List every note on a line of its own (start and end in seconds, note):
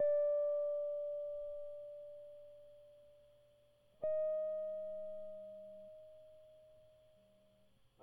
0.00 3.05 D5
4.03 6.84 D#5